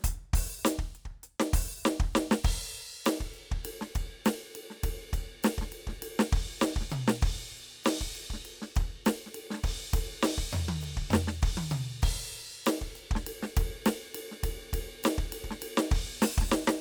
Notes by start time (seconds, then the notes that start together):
0.01 closed hi-hat, kick, snare
0.34 open hi-hat, kick
0.63 closed hi-hat, snare, hi-hat pedal
0.79 kick
0.96 closed hi-hat
1.06 kick
1.24 closed hi-hat
1.40 snare
1.54 open hi-hat, kick
1.85 snare, hi-hat pedal
2.00 kick
2.13 snare, hi-hat pedal
2.32 snare
2.45 kick, crash
2.71 hi-hat pedal
3.05 snare, hi-hat pedal, ride
3.21 kick
3.34 hi-hat pedal, ride
3.52 kick
3.64 hi-hat pedal, ride
3.82 snare
3.96 kick, ride bell
4.25 snare, hi-hat pedal, ride
4.56 ride
4.71 snare
4.76 snare
4.83 kick, hi-hat pedal, ride
5.13 kick, ride bell
5.43 snare, hi-hat pedal, ride
5.58 kick, snare
5.72 hi-hat pedal, ride
5.88 kick, snare
6.03 hi-hat pedal, ride
6.20 snare
6.33 kick, ride
6.61 snare, hi-hat pedal, ride
6.77 kick
6.81 snare
6.91 hi-hat pedal, mid tom
7.08 snare
7.23 kick, ride
7.84 snare, hi-hat pedal, ride
8.01 kick
8.14 hi-hat pedal, ride
8.31 kick, snare
8.45 hi-hat pedal, ride
8.62 snare
8.77 kick, ride bell
9.06 snare, hi-hat pedal, ride
9.27 snare
9.34 hi-hat pedal, ride
9.51 snare
9.54 snare
9.58 snare
9.63 kick, hi-hat pedal, ride
9.94 kick, ride
10.23 snare, hi-hat pedal, ride
10.38 kick
10.52 floor tom, hi-hat pedal
10.69 high tom
10.81 hi-hat pedal, ride
10.97 kick
11.11 snare, floor tom, hi-hat pedal
11.28 snare
11.42 kick, hi-hat pedal, ride
11.58 high tom
11.71 hi-hat pedal, mid tom
12.02 kick, hi-hat pedal, crash
12.67 snare, hi-hat pedal, ride
12.82 kick
12.96 hi-hat pedal, ride
13.12 kick, crash
13.16 snare
13.27 ride
13.43 snare
13.57 kick, ride
13.86 snare, hi-hat pedal, ride
14.08 kick
14.15 ride
14.32 snare
14.44 kick, hi-hat pedal, ride
14.73 kick, ride
15.03 snare, hi-hat pedal, ride
15.19 kick
15.32 hi-hat pedal, ride
15.45 kick
15.51 snare
15.61 hi-hat pedal, ride
15.78 snare
15.92 kick, ride
16.22 open hi-hat, snare
16.38 kick, snare
16.49 snare
16.52 snare
16.68 snare